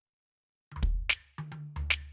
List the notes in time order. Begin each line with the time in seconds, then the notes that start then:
0.71 high tom
0.76 floor tom
0.83 kick
1.09 snare
1.38 high tom
1.52 high tom
1.76 floor tom
1.90 snare